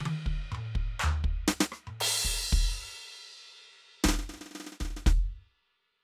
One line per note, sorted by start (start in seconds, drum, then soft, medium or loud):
0.01 high tom medium
0.06 high tom loud
0.26 kick medium
0.52 mid tom loud
0.55 mid tom medium
0.75 kick medium
1.00 percussion medium
1.04 floor tom loud
1.24 kick medium
1.48 snare loud
1.61 snare loud
1.72 cross-stick soft
1.87 mid tom medium
2.01 crash loud
2.25 kick medium
2.53 kick medium
2.53 snare soft
4.04 kick medium
4.04 snare loud
4.09 snare loud
4.14 snare medium
4.23 snare soft
4.28 snare soft
4.34 snare soft
4.38 snare soft
4.41 snare soft
4.46 snare soft
4.51 snare soft
4.55 snare soft
4.60 snare soft
4.64 snare soft
4.67 snare soft
4.72 snare soft
4.80 kick medium
4.80 snare soft
4.85 snare soft
4.90 snare soft
4.97 snare soft
5.02 snare soft
5.06 kick loud
5.06 snare medium